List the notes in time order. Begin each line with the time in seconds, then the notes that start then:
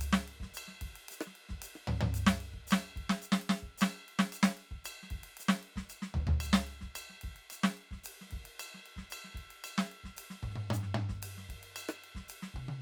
0.01 hi-hat pedal, ride
0.13 snare
0.28 ride
0.41 kick, snare
0.46 kick
0.55 hi-hat pedal, ride bell
0.68 snare
0.74 snare
0.82 kick, ride
0.87 kick, snare
0.91 snare
0.96 ride
1.09 hi-hat pedal, ride
1.21 cross-stick
1.27 snare
1.36 ride
1.49 kick, snare
1.57 kick
1.63 hi-hat pedal, ride
1.76 cross-stick
1.88 floor tom
2.01 floor tom
2.15 hi-hat pedal, ride
2.27 snare
2.41 ride
2.54 kick
2.68 hi-hat pedal, ride bell
2.73 snare
2.97 kick, ride
3.02 kick
3.10 snare
3.23 hi-hat pedal, ride bell
3.33 snare
3.42 ride
3.50 snare
3.63 kick
3.78 hi-hat pedal, ride bell
3.82 snare
4.09 ride
4.20 snare
4.33 hi-hat pedal, ride bell
4.44 snare
4.58 ride
4.72 kick
4.78 kick
4.85 hi-hat pedal, ride bell
5.03 snare
5.11 kick, ride
5.18 kick
5.24 ride
5.38 hi-hat pedal, ride
5.49 snare
5.64 ride
5.76 kick, snare
5.90 hi-hat pedal, ride bell
6.03 snare
6.15 kick, floor tom
6.23 kick
6.28 floor tom
6.41 hi-hat pedal, ride bell
6.54 snare
6.68 ride
6.81 kick, snare
6.96 hi-hat pedal, ride bell
7.10 snare
7.22 kick, ride
7.30 kick, snare
7.37 ride
7.51 hi-hat pedal, ride bell
7.64 snare
7.78 ride
7.92 kick, snare
8.04 hi-hat pedal, ride
8.22 snare
8.31 kick, snare, ride
8.36 kick, snare
8.46 ride
8.60 hi-hat pedal, ride bell
8.75 snare
8.86 ride
8.97 kick, snare
9.05 snare
9.11 hi-hat pedal, ride bell
9.25 snare
9.31 snare
9.35 kick, snare, ride
9.38 snare
9.51 ride
9.65 hi-hat pedal, ride bell
9.79 snare
9.92 ride
10.04 kick, snare
10.17 hi-hat pedal, ride
10.31 snare
10.43 kick, snare, mid tom
10.51 snare
10.56 snare, mid tom
10.58 snare
10.61 snare
10.71 hi-hat pedal, mid tom
10.84 snare
10.95 mid tom
11.10 kick, snare
11.23 hi-hat pedal, ride
11.38 snare
11.44 snare
11.49 kick, ride
11.61 snare, ride
11.77 hi-hat pedal, ride bell
11.90 cross-stick
12.04 ride
12.16 kick, snare
12.29 hi-hat pedal, ride
12.43 snare
12.55 kick, high tom
12.69 high tom